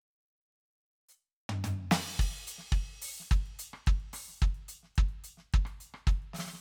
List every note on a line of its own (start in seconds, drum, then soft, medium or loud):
1.09 hi-hat pedal soft
1.49 high tom loud
1.64 hi-hat pedal medium
1.64 high tom loud
1.91 snare loud
1.91 crash loud
2.19 kick loud
2.19 closed hi-hat medium
2.31 snare soft
2.47 closed hi-hat medium
2.58 snare soft
2.72 kick loud
2.72 closed hi-hat soft
2.87 closed hi-hat soft
3.02 open hi-hat loud
3.20 snare soft
3.27 hi-hat pedal soft
3.31 kick loud
3.31 closed hi-hat soft
3.38 snare soft
3.46 closed hi-hat soft
3.59 closed hi-hat medium
3.73 cross-stick medium
3.86 kick loud
3.86 closed hi-hat soft
4.00 closed hi-hat soft
4.13 open hi-hat medium
4.13 cross-stick medium
4.28 snare soft
4.38 kick loud
4.38 closed hi-hat soft
4.38 hi-hat pedal soft
4.55 closed hi-hat soft
4.68 closed hi-hat medium
4.83 snare soft
4.96 kick loud
4.96 closed hi-hat soft
5.09 closed hi-hat soft
5.24 closed hi-hat medium
5.37 snare soft
5.53 kick loud
5.53 closed hi-hat soft
5.65 cross-stick medium
5.65 closed hi-hat soft
5.80 closed hi-hat soft
5.94 cross-stick medium
6.07 kick loud
6.07 closed hi-hat soft
6.22 closed hi-hat soft
6.33 open hi-hat medium
6.33 snare medium
6.39 snare medium
6.42 snare soft
6.46 snare medium
6.53 snare soft